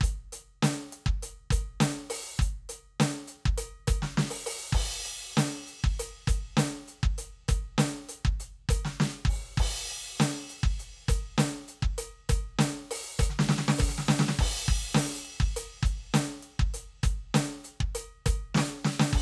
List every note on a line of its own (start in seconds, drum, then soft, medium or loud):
0.01 closed hi-hat loud
0.01 kick loud
0.33 closed hi-hat loud
0.63 closed hi-hat loud
0.63 snare loud
0.93 closed hi-hat medium
1.06 kick loud
1.23 closed hi-hat loud
1.51 closed hi-hat loud
1.51 kick loud
1.80 closed hi-hat loud
1.80 snare loud
2.10 open hi-hat loud
2.38 closed hi-hat medium
2.38 kick loud
2.38 hi-hat pedal soft
2.69 closed hi-hat loud
3.00 closed hi-hat loud
3.00 snare loud
3.28 closed hi-hat medium
3.46 kick loud
3.58 closed hi-hat loud
3.88 closed hi-hat loud
3.88 kick loud
4.02 snare medium
4.17 snare loud
4.31 open hi-hat loud
4.46 open hi-hat loud
4.73 kick loud
4.73 hi-hat pedal soft
4.73 crash loud
5.05 closed hi-hat medium
5.37 closed hi-hat loud
5.37 snare loud
5.67 closed hi-hat medium
5.84 kick loud
5.84 snare soft
6.00 closed hi-hat loud
6.28 closed hi-hat loud
6.28 kick loud
6.57 closed hi-hat loud
6.57 snare loud
6.88 closed hi-hat medium
7.03 kick loud
7.18 closed hi-hat loud
7.48 closed hi-hat loud
7.48 kick loud
7.78 closed hi-hat loud
7.78 snare loud
8.09 closed hi-hat loud
8.25 kick loud
8.40 closed hi-hat medium
8.69 closed hi-hat loud
8.69 kick loud
8.85 snare medium
9.00 snare loud
9.25 open hi-hat medium
9.25 kick loud
9.33 open hi-hat medium
9.58 kick loud
9.58 crash loud
9.89 closed hi-hat medium
10.20 closed hi-hat loud
10.20 snare loud
10.50 closed hi-hat medium
10.63 kick loud
10.80 closed hi-hat medium
11.09 closed hi-hat loud
11.09 kick loud
11.38 closed hi-hat loud
11.38 snare loud
11.68 closed hi-hat medium
11.83 kick loud
11.98 closed hi-hat loud
12.29 closed hi-hat loud
12.29 kick loud
12.59 closed hi-hat loud
12.59 snare loud
12.91 open hi-hat loud
13.19 open hi-hat loud
13.19 kick loud
13.23 hi-hat pedal soft
13.30 snare medium
13.39 snare loud
13.49 snare loud
13.58 snare loud
13.58 hi-hat pedal soft
13.68 snare loud
13.79 open hi-hat loud
13.79 kick loud
13.88 snare medium
13.98 snare medium
14.09 snare loud
14.19 snare loud
14.29 snare loud
14.39 kick loud
14.39 crash loud
14.68 kick loud
14.68 snare soft
14.95 open hi-hat loud
14.95 snare loud
15.25 closed hi-hat medium
15.40 kick loud
15.40 snare soft
15.56 closed hi-hat loud
15.83 closed hi-hat medium
15.83 kick loud
15.83 snare soft
16.14 closed hi-hat loud
16.14 snare loud
16.43 closed hi-hat medium
16.59 kick loud
16.59 snare soft
16.74 closed hi-hat loud
17.03 closed hi-hat loud
17.03 kick loud
17.34 closed hi-hat loud
17.34 snare loud
17.64 closed hi-hat medium
17.80 kick loud
17.95 closed hi-hat loud
18.26 closed hi-hat loud
18.26 kick loud
18.55 snare loud
18.58 snare loud
18.85 snare loud
19.00 snare loud
19.13 kick loud
19.13 crash loud